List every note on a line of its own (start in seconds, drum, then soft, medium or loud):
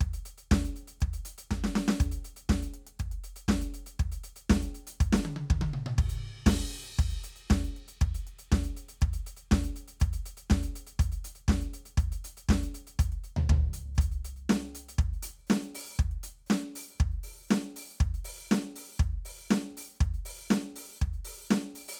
0.01 kick loud
0.01 closed hi-hat medium
0.14 closed hi-hat medium
0.26 closed hi-hat medium
0.38 closed hi-hat medium
0.52 kick loud
0.52 snare loud
0.65 closed hi-hat medium
0.76 closed hi-hat medium
0.88 closed hi-hat medium
1.01 kick loud
1.01 closed hi-hat medium
1.14 closed hi-hat medium
1.25 closed hi-hat loud
1.38 closed hi-hat medium
1.51 kick medium
1.51 snare medium
1.64 snare medium
1.76 snare loud
1.88 snare loud
2.00 closed hi-hat medium
2.00 kick loud
2.12 closed hi-hat medium
2.25 closed hi-hat medium
2.37 closed hi-hat medium
2.50 kick loud
2.50 snare loud
2.63 closed hi-hat medium
2.74 closed hi-hat medium
2.87 closed hi-hat medium
3.00 kick medium
3.00 closed hi-hat medium
3.12 closed hi-hat medium
3.24 closed hi-hat medium
3.36 closed hi-hat medium
3.49 kick loud
3.49 snare loud
3.62 closed hi-hat medium
3.74 closed hi-hat medium
3.87 closed hi-hat medium
4.00 kick loud
4.00 closed hi-hat medium
4.12 closed hi-hat medium
4.24 closed hi-hat medium
4.36 closed hi-hat medium
4.50 kick loud
4.50 snare loud
4.62 closed hi-hat medium
4.75 closed hi-hat medium
4.87 closed hi-hat medium
5.01 closed hi-hat medium
5.01 kick loud
5.13 snare loud
5.25 high tom loud
5.37 high tom loud
5.50 kick loud
5.50 high tom medium
5.62 high tom loud
5.74 mid tom loud
5.87 mid tom loud
5.99 kick loud
5.99 ride medium
6.10 closed hi-hat medium
6.47 kick loud
6.47 snare loud
6.47 crash loud
6.74 closed hi-hat soft
6.84 closed hi-hat medium
6.99 closed hi-hat medium
6.99 kick loud
7.10 closed hi-hat soft
7.24 closed hi-hat medium
7.36 closed hi-hat soft
7.50 kick loud
7.50 snare loud
7.64 closed hi-hat soft
7.77 closed hi-hat soft
7.88 closed hi-hat medium
8.01 kick loud
8.01 closed hi-hat medium
8.15 closed hi-hat medium
8.27 closed hi-hat medium
8.39 closed hi-hat medium
8.52 kick loud
8.52 snare loud
8.64 closed hi-hat medium
8.77 closed hi-hat medium
8.89 closed hi-hat medium
9.02 kick loud
9.02 closed hi-hat medium
9.14 closed hi-hat medium
9.27 closed hi-hat medium
9.37 closed hi-hat medium
9.52 kick loud
9.52 snare loud
9.64 closed hi-hat medium
9.76 closed hi-hat medium
9.88 closed hi-hat medium
10.00 closed hi-hat medium
10.00 kick loud
10.13 closed hi-hat medium
10.26 closed hi-hat medium
10.38 closed hi-hat medium
10.50 kick loud
10.50 snare loud
10.63 closed hi-hat medium
10.76 closed hi-hat medium
10.87 closed hi-hat medium
11.00 closed hi-hat medium
11.00 kick loud
11.12 closed hi-hat medium
11.25 closed hi-hat medium
11.35 closed hi-hat medium
11.48 kick loud
11.48 snare loud
11.61 closed hi-hat medium
11.74 closed hi-hat medium
11.86 closed hi-hat medium
11.98 closed hi-hat medium
11.98 kick loud
12.12 closed hi-hat medium
12.25 closed hi-hat medium
12.38 closed hi-hat medium
12.49 kick loud
12.49 snare loud
12.63 closed hi-hat medium
12.75 closed hi-hat medium
12.87 closed hi-hat medium
12.99 closed hi-hat medium
12.99 kick loud
13.12 closed hi-hat soft
13.24 closed hi-hat soft
13.37 floor tom loud
13.50 kick loud
13.50 floor tom loud
13.74 open hi-hat medium
13.93 kick soft
13.93 hi-hat pedal soft
13.98 closed hi-hat medium
13.98 kick loud
14.12 closed hi-hat soft
14.25 closed hi-hat medium
14.37 closed hi-hat soft
14.50 snare loud
14.66 closed hi-hat soft
14.75 closed hi-hat loud
14.89 closed hi-hat medium
14.99 kick loud
14.99 closed hi-hat soft
15.14 closed hi-hat soft
15.23 closed hi-hat loud
15.38 open hi-hat soft
15.47 snare loud
15.47 hi-hat pedal soft
15.63 closed hi-hat soft
15.75 open hi-hat loud
15.90 open hi-hat soft
15.96 kick loud
15.96 hi-hat pedal soft
16.01 closed hi-hat soft
16.12 closed hi-hat soft
16.24 closed hi-hat loud
16.39 open hi-hat soft
16.47 snare loud
16.47 hi-hat pedal soft
16.62 closed hi-hat soft
16.76 open hi-hat loud
16.90 open hi-hat medium
16.95 kick soft
16.95 hi-hat pedal soft
17.00 kick loud
17.11 closed hi-hat soft
17.24 open hi-hat medium
17.39 open hi-hat soft
17.49 snare loud
17.49 hi-hat pedal soft
17.65 closed hi-hat soft
17.76 open hi-hat loud
17.91 open hi-hat soft
17.98 kick loud
17.98 hi-hat pedal soft
18.03 closed hi-hat soft
18.14 closed hi-hat soft
18.25 open hi-hat loud
18.40 open hi-hat soft
18.49 snare loud
18.49 hi-hat pedal soft
18.65 kick soft
18.65 closed hi-hat soft
18.76 open hi-hat loud
18.90 open hi-hat soft
18.98 kick loud
18.98 hi-hat pedal soft
19.03 closed hi-hat soft
19.12 closed hi-hat soft
19.26 open hi-hat loud
19.40 open hi-hat soft
19.50 snare loud
19.50 hi-hat pedal soft
19.66 closed hi-hat soft
19.71 kick soft
19.77 open hi-hat loud
19.93 hi-hat pedal soft
19.93 open hi-hat soft
20.01 kick loud
20.01 closed hi-hat soft
20.14 closed hi-hat soft
20.26 open hi-hat loud
20.40 open hi-hat soft
20.50 snare loud
20.50 hi-hat pedal soft
20.65 closed hi-hat soft
20.72 kick soft
20.76 open hi-hat loud
20.90 open hi-hat soft
20.97 hi-hat pedal soft
21.02 kick loud
21.02 closed hi-hat soft
21.14 closed hi-hat soft
21.25 open hi-hat loud
21.39 open hi-hat soft
21.49 snare loud
21.49 hi-hat pedal soft
21.63 closed hi-hat soft
21.73 open hi-hat loud
21.73 kick soft
21.89 open hi-hat loud
21.96 hi-hat pedal soft